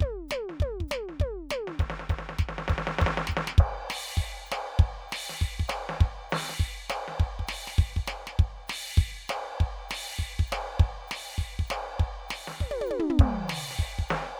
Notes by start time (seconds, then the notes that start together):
0.01 kick, high tom
0.29 snare, hi-hat pedal, high tom
0.50 snare
0.60 kick, high tom
0.81 kick
0.88 snare, hi-hat pedal, high tom
1.09 snare
1.20 kick, high tom
1.50 snare, hi-hat pedal, high tom
1.68 snare
1.80 kick, snare, hi-hat pedal
1.90 snare
2.00 snare
2.10 kick, snare, hi-hat pedal
2.19 snare
2.29 snare
2.39 kick, snare, hi-hat pedal
2.49 snare
2.59 snare
2.68 kick, snare, hi-hat pedal
2.78 snare
2.88 snare
2.99 kick, snare, hi-hat pedal
3.07 snare
3.18 snare
3.28 kick, snare, hi-hat pedal
3.37 snare
3.48 snare
3.58 kick, crash
3.90 snare, hi-hat pedal, crash
4.18 kick
4.46 hi-hat pedal
4.52 snare, crash
4.79 kick
5.09 snare, hi-hat pedal, crash
5.30 snare
5.42 kick
5.60 kick
5.68 snare, hi-hat pedal, crash
5.90 snare
6.01 kick
6.30 snare, hi-hat pedal, crash
6.50 snare
6.60 kick
6.90 snare, hi-hat pedal, crash
7.08 snare
7.20 kick
7.40 kick
7.48 snare, hi-hat pedal, crash
7.68 snare
7.79 kick
7.97 kick
8.07 snare, hi-hat pedal, crash
8.28 snare
8.39 kick
8.67 snare, hi-hat pedal, crash
8.98 kick
9.28 snare, hi-hat pedal, crash
9.61 kick
9.89 snare, hi-hat pedal, crash
10.19 kick
10.40 kick
10.47 hi-hat pedal
10.52 snare, crash
10.80 kick
11.08 snare, hi-hat pedal, crash
11.38 kick
11.60 kick
11.67 snare, hi-hat pedal
11.71 crash
12.00 kick
12.28 snare, hi-hat pedal, crash
12.48 snare
12.61 kick, high tom
12.71 high tom
12.81 high tom
12.87 hi-hat pedal
12.91 high tom
12.99 floor tom
13.10 floor tom, hi-hat pedal
13.20 kick, crash
13.48 snare, hi-hat pedal, crash
13.71 snare
13.79 kick
13.99 kick
14.09 snare, hi-hat pedal, crash